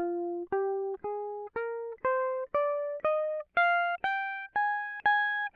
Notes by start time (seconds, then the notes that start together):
0.00 F4
0.53 G4
1.04 G#4
1.56 A#4
2.05 C5
2.54 D5
3.05 D#5
3.57 F5
4.04 G5
4.56 G#5
5.06 G#5